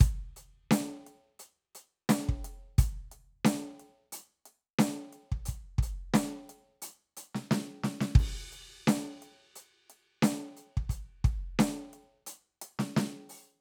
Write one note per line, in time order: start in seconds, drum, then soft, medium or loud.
0.01 closed hi-hat loud
0.01 kick loud
0.37 closed hi-hat medium
0.72 closed hi-hat loud
0.72 snare loud
1.07 closed hi-hat soft
1.40 closed hi-hat medium
1.76 closed hi-hat medium
2.10 closed hi-hat loud
2.10 snare loud
2.30 kick medium
2.45 closed hi-hat medium
2.79 closed hi-hat loud
2.79 kick loud
3.12 closed hi-hat medium
3.45 closed hi-hat loud
3.45 snare loud
3.80 closed hi-hat soft
4.13 closed hi-hat loud
4.46 closed hi-hat medium
4.80 closed hi-hat loud
4.80 snare loud
5.13 closed hi-hat soft
5.33 kick medium
5.46 closed hi-hat loud
5.46 kick medium
5.79 kick medium
5.79 snare soft
5.84 closed hi-hat medium
6.14 closed hi-hat loud
6.14 snare loud
6.50 closed hi-hat medium
6.83 closed hi-hat loud
7.18 closed hi-hat loud
7.35 snare medium
7.52 snare loud
7.84 snare loud
8.01 snare loud
8.16 kick loud
8.16 snare soft
8.16 crash medium
8.53 closed hi-hat medium
8.88 closed hi-hat medium
8.88 snare loud
9.23 closed hi-hat soft
9.56 closed hi-hat medium
9.91 closed hi-hat medium
10.23 closed hi-hat loud
10.23 snare loud
10.58 closed hi-hat soft
10.78 kick medium
10.90 closed hi-hat medium
10.90 kick medium
11.25 kick loud
11.25 closed hi-hat soft
11.60 closed hi-hat medium
11.60 snare loud
11.94 closed hi-hat soft
12.27 closed hi-hat loud
12.62 closed hi-hat loud
12.80 snare medium
12.97 snare loud
13.30 open hi-hat medium